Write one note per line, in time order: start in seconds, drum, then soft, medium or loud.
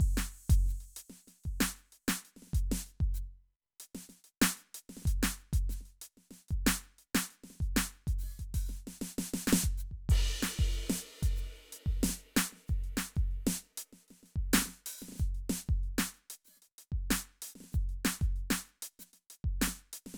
0.01 kick medium
0.01 crash medium
0.18 snare medium
0.34 closed hi-hat soft
0.50 closed hi-hat loud
0.50 kick medium
0.67 snare soft
0.67 hi-hat pedal medium
0.81 closed hi-hat soft
0.97 closed hi-hat medium
1.10 snare soft
1.28 snare soft
1.28 closed hi-hat soft
1.44 kick soft
1.44 closed hi-hat soft
1.61 snare loud
1.77 closed hi-hat soft
1.93 closed hi-hat soft
2.09 snare medium
2.26 closed hi-hat soft
2.37 snare soft
2.43 snare soft
2.48 snare soft
2.54 kick medium
2.54 closed hi-hat medium
2.72 snare medium
2.87 closed hi-hat soft
3.01 kick medium
3.01 open hi-hat soft
3.15 hi-hat pedal medium
3.81 closed hi-hat medium
3.95 snare soft
4.10 snare soft
4.10 closed hi-hat soft
4.25 closed hi-hat soft
4.42 snare loud
4.58 closed hi-hat medium
4.75 closed hi-hat medium
4.90 snare soft
4.97 snare soft
5.02 kick medium
5.02 snare soft
5.08 closed hi-hat medium
5.23 snare medium
5.38 closed hi-hat soft
5.54 closed hi-hat medium
5.54 kick medium
5.70 snare soft
5.70 hi-hat pedal medium
5.81 snare soft
5.86 closed hi-hat soft
6.02 closed hi-hat medium
6.18 snare soft
6.31 snare soft
6.31 closed hi-hat soft
6.49 kick soft
6.49 closed hi-hat soft
6.67 snare loud
6.82 closed hi-hat soft
6.99 closed hi-hat soft
7.15 snare loud
7.31 closed hi-hat soft
7.44 snare soft
7.51 snare soft
7.56 snare soft
7.61 kick soft
7.61 closed hi-hat soft
7.77 snare loud
7.93 closed hi-hat soft
8.08 kick medium
8.08 open hi-hat medium
8.19 hi-hat pedal medium
8.24 snare soft
8.40 kick soft
8.40 closed hi-hat soft
8.55 open hi-hat medium
8.55 kick soft
8.70 snare soft
8.74 hi-hat pedal soft
8.88 snare soft
9.02 snare medium
9.19 snare medium
9.34 snare medium
9.48 snare medium
9.53 snare loud
9.64 kick medium
9.78 hi-hat pedal medium
9.92 kick soft
10.10 kick medium
10.10 crash medium
10.10 ride loud
10.43 snare medium
10.58 kick medium
10.58 closed hi-hat soft
10.72 closed hi-hat soft
10.72 hi-hat pedal soft
10.90 snare medium
11.06 closed hi-hat soft
11.23 closed hi-hat medium
11.23 kick medium
11.36 hi-hat pedal medium
11.56 closed hi-hat soft
11.73 closed hi-hat medium
11.87 kick medium
12.04 open hi-hat loud
12.04 snare loud
12.10 snare soft
12.37 open hi-hat loud
12.37 snare loud
12.53 snare soft
12.57 snare soft
12.67 kick medium
12.67 closed hi-hat soft
12.67 hi-hat pedal soft
12.84 closed hi-hat soft
12.98 snare medium
13.16 kick medium
13.16 closed hi-hat soft
13.32 closed hi-hat soft
13.47 snare loud
13.63 closed hi-hat soft
13.78 closed hi-hat loud
13.93 snare soft
14.09 snare soft
14.09 closed hi-hat soft
14.23 snare soft
14.23 closed hi-hat soft
14.36 kick soft
14.54 open hi-hat loud
14.54 snare loud
14.58 snare medium
14.62 snare soft
14.66 snare soft
14.69 snare soft
14.87 open hi-hat loud
15.02 snare soft
15.09 snare soft
15.13 snare soft
15.16 snare soft
15.16 closed hi-hat soft
15.16 hi-hat pedal medium
15.20 kick medium
15.35 closed hi-hat soft
15.50 snare medium
15.67 kick medium
15.67 closed hi-hat soft
15.84 closed hi-hat soft
15.99 snare medium
16.15 closed hi-hat soft
16.31 closed hi-hat medium
16.45 snare soft
16.45 hi-hat pedal soft
16.57 snare soft
16.63 closed hi-hat soft
16.79 closed hi-hat medium
16.92 kick soft
17.11 open hi-hat loud
17.11 snare medium
17.43 open hi-hat loud
17.56 snare soft
17.61 snare soft
17.64 snare soft
17.72 kick medium
17.72 snare soft
17.72 hi-hat pedal medium
17.90 closed hi-hat soft
18.05 snare loud
18.22 kick medium
18.22 closed hi-hat soft
18.37 closed hi-hat soft
18.51 snare medium
18.66 closed hi-hat soft
18.83 closed hi-hat loud
19.00 snare soft
19.00 hi-hat pedal medium
19.14 snare soft
19.14 closed hi-hat soft
19.31 closed hi-hat medium
19.45 kick medium
19.62 open hi-hat loud
19.62 snare medium
19.68 snare soft
19.94 open hi-hat loud
20.07 snare soft
20.15 snare soft